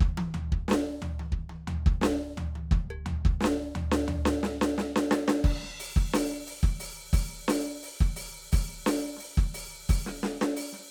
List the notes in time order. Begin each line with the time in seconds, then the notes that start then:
0.01 kick, floor tom
0.18 high tom
0.35 floor tom
0.52 kick
0.69 snare
0.72 snare
1.02 floor tom
1.20 high tom
1.32 kick
1.50 high tom
1.68 floor tom
1.87 kick
2.02 snare
2.04 snare
2.38 floor tom
2.56 high tom
2.72 kick, floor tom
2.91 percussion
3.06 floor tom
3.25 kick
3.41 snare
3.45 snare
3.76 floor tom
3.92 snare
4.08 floor tom
4.26 snare
4.43 snare
4.62 snare
4.78 snare
4.96 snare
5.11 snare
5.28 snare
5.44 kick, crash
5.63 snare
5.69 snare
5.80 open hi-hat
5.97 kick
6.14 open hi-hat, snare
6.47 open hi-hat
6.63 kick
6.80 open hi-hat
7.13 open hi-hat, kick
7.48 open hi-hat, snare
7.83 open hi-hat
8.01 kick
8.16 open hi-hat
8.52 open hi-hat, kick
8.87 open hi-hat, snare
9.17 open hi-hat, snare
9.38 kick
9.54 open hi-hat
9.89 open hi-hat, kick
10.07 snare
10.23 snare
10.42 snare
10.57 open hi-hat
10.73 snare
10.79 snare